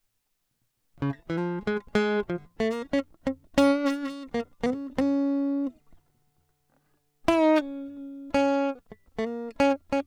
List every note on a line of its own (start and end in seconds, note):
1.03 1.16 C#3
1.30 1.39 E3
1.39 1.63 F3
1.68 1.82 G#3
1.96 2.25 G#3
2.30 2.40 F3
2.61 2.73 A3
2.94 3.06 C#4
3.27 3.37 C4
3.58 4.09 D4
4.35 4.46 A#3
4.64 4.74 B3
4.99 5.73 C#4
7.29 7.57 D#4
7.58 8.32 C#4
8.35 8.76 C#4
9.19 9.54 A#3
9.61 9.80 C#4
9.93 10.05 C#4